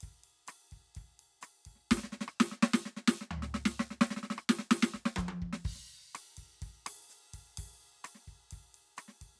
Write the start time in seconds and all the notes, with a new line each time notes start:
0.01 kick, hi-hat pedal, ride
0.08 kick
0.24 ride
0.47 cross-stick, hi-hat pedal, ride
0.72 kick, ride
0.77 kick
0.95 kick, hi-hat pedal, ride
1.20 ride
1.42 cross-stick, hi-hat pedal, ride
1.66 kick, ride
1.76 snare
1.91 kick, snare, hi-hat pedal
1.98 snare
2.04 snare
2.13 snare
2.21 snare
2.28 cross-stick
2.40 snare
2.52 snare
2.63 snare
2.74 snare
2.86 snare
2.97 snare
3.08 snare
3.21 snare
3.31 floor tom
3.43 snare
3.55 snare
3.66 snare
3.80 snare
3.91 snare
4.01 snare
4.11 snare
4.17 snare
4.23 snare
4.31 snare
4.35 cross-stick, snare
4.50 snare
4.59 snare
4.71 snare, hi-hat pedal
4.83 snare
4.94 kick, snare, hi-hat pedal
5.06 snare
5.16 kick, hi-hat pedal, high tom
5.25 kick, high tom
5.42 kick
5.50 kick, snare
5.62 kick, hi-hat pedal, crash
5.71 kick
5.75 kick, snare
6.15 cross-stick, hi-hat pedal, ride
6.37 kick, ride
6.43 kick
6.62 kick, ride
6.68 kick
6.87 cross-stick, ride
7.10 hi-hat pedal
7.34 kick, ride
7.39 kick
7.57 kick, hi-hat pedal, ride
7.64 kick
7.82 ride
8.04 cross-stick, hi-hat pedal, ride
8.15 snare
8.28 kick
8.33 kick
8.51 kick, hi-hat pedal, ride
8.58 kick
8.75 ride
8.97 cross-stick, hi-hat pedal, ride
9.08 snare
9.22 kick, ride
9.36 snare